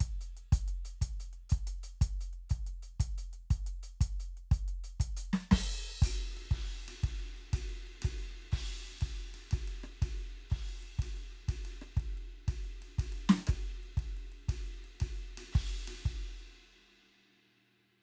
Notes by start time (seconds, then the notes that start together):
0.01 kick, closed hi-hat
0.21 closed hi-hat
0.37 closed hi-hat
0.53 closed hi-hat, kick
0.68 closed hi-hat
0.86 closed hi-hat
1.02 kick, closed hi-hat
1.21 closed hi-hat
1.34 closed hi-hat
1.50 closed hi-hat, kick
1.68 closed hi-hat
1.84 closed hi-hat
2.02 kick, closed hi-hat
2.21 closed hi-hat
2.34 closed hi-hat
2.50 closed hi-hat, kick
2.67 closed hi-hat
2.83 closed hi-hat
3.00 kick, closed hi-hat
3.18 closed hi-hat
3.34 closed hi-hat
3.51 closed hi-hat, kick
3.67 closed hi-hat
3.84 closed hi-hat
4.01 kick, closed hi-hat
4.20 closed hi-hat
4.38 closed hi-hat
4.52 closed hi-hat, kick
4.69 closed hi-hat
4.84 closed hi-hat
5.00 kick, closed hi-hat
5.17 closed hi-hat
5.34 snare
5.52 kick, snare, crash
6.03 open hi-hat, kick, ride
6.22 ride
6.37 ride
6.52 kick, ride
6.71 ride
6.89 ride
7.04 kick, ride
7.20 ride
7.37 ride
7.54 kick, ride
7.70 ride
7.88 ride
8.03 kick, ride
8.19 ride
8.53 kick, ride
8.69 ride
8.86 ride
9.02 kick, ride
9.17 ride
9.35 ride
9.52 kick, ride
9.68 ride
9.84 cross-stick
10.02 kick, ride
10.19 ride
10.51 kick, ride
10.70 ride
10.83 ride
10.99 kick, ride
11.18 ride
11.35 ride
11.49 kick, ride
11.66 ride
11.82 cross-stick
11.97 kick, ride
12.18 ride
12.33 ride
12.48 kick, ride
12.65 ride
12.83 ride
12.99 kick, ride
13.13 ride
13.30 snare
13.47 kick, cross-stick, ride
13.84 ride
13.98 kick, ride
14.17 ride
14.32 ride
14.49 kick, ride
14.67 ride
14.85 ride
15.01 kick, ride
15.17 ride
15.38 ride
15.53 kick, ride
15.70 ride
15.88 ride
16.06 kick, ride